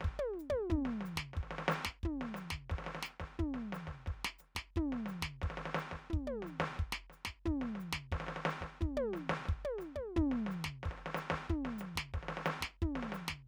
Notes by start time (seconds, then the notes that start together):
0.01 kick, snare
0.19 high tom
0.34 snare
0.39 hi-hat pedal
0.50 kick, high tom
0.69 kick, floor tom
0.85 snare
1.01 snare
1.05 hi-hat pedal
1.16 kick, snare
1.34 kick, snare
1.43 snare
1.51 snare
1.59 snare
1.68 snare, hi-hat pedal
1.85 kick, snare
2.03 kick, floor tom
2.21 snare
2.34 snare, hi-hat pedal
2.51 kick, snare
2.70 kick, snare
2.79 snare
2.84 snare
2.87 snare
2.95 snare
3.03 snare, hi-hat pedal
3.20 kick, snare
3.38 kick, floor tom
3.54 snare
3.73 snare, hi-hat pedal
3.87 kick, snare
4.06 kick, snare
4.25 snare
4.39 snare, hi-hat pedal
4.55 kick, snare
4.76 kick, floor tom
4.92 snare
5.06 snare, hi-hat pedal
5.22 kick, snare
5.42 kick, snare
5.50 snare
5.57 snare
5.66 snare
5.75 snare, hi-hat pedal
5.92 kick, snare
6.09 floor tom
6.13 kick
6.27 high tom
6.42 snare
6.47 hi-hat pedal
6.59 kick, snare
6.77 kick, snare
6.93 snare
7.10 snare, hi-hat pedal
7.25 kick, snare
7.45 kick, floor tom
7.62 snare
7.75 snare
7.80 hi-hat pedal
7.93 kick, snare
8.12 kick, snare
8.20 snare
8.27 snare
8.29 snare
8.36 snare
8.45 snare, hi-hat pedal
8.61 kick, snare
8.80 kick, floor tom
8.97 high tom
9.14 snare, hi-hat pedal
9.29 kick, snare
9.46 kick, snare
9.65 high tom
9.79 snare, hi-hat pedal
9.96 kick, high tom
10.16 kick, floor tom
10.32 snare
10.47 snare
10.51 hi-hat pedal
10.64 kick, snare
10.83 kick, snare
10.91 snare
10.98 snare
11.06 snare
11.15 snare, hi-hat pedal
11.30 kick, snare
11.49 kick, floor tom
11.65 snare
11.78 snare, hi-hat pedal
11.96 kick, snare
12.14 kick, snare
12.23 snare
12.29 snare
12.37 snare
12.46 snare, hi-hat pedal
12.61 kick, snare
12.81 kick, floor tom
12.96 snare
13.03 snare
13.10 snare
13.12 snare, hi-hat pedal
13.28 kick, snare